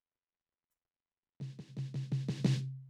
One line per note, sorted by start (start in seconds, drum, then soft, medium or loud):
0.71 hi-hat pedal soft
1.40 snare soft
1.40 floor tom soft
1.59 snare soft
1.59 floor tom soft
1.77 snare soft
1.77 floor tom medium
1.94 snare soft
1.94 floor tom medium
2.12 snare medium
2.12 floor tom medium
2.29 snare medium
2.29 floor tom medium
2.45 snare loud
2.45 floor tom loud